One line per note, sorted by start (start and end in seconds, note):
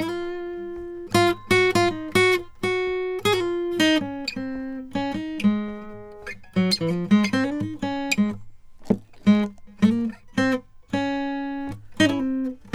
0.00 1.10 F4
1.15 1.37 F4
1.52 1.74 F#4
1.76 1.95 F4
1.90 2.12 D#4
2.16 2.40 F#4
2.64 3.22 F#4
3.26 3.40 G#4
3.41 3.50 F4
3.51 3.84 F4
3.81 3.96 D#4
3.97 4.32 C#4
4.38 4.83 C4
4.96 5.12 C#4
5.13 5.44 D#4
5.45 6.32 G#3
6.57 6.76 F#3
6.82 6.92 E3
6.92 7.08 F3
7.12 7.29 G#3
7.34 7.45 C4
7.45 7.61 D4
7.61 7.74 D#4
7.75 7.83 C#4
7.84 8.18 C#4
8.19 8.40 G#3
9.28 9.52 G#3
9.83 9.92 A3
10.39 10.64 C4
10.95 11.76 C#4
12.01 12.11 D#4
12.11 12.21 C#4
12.21 12.60 C4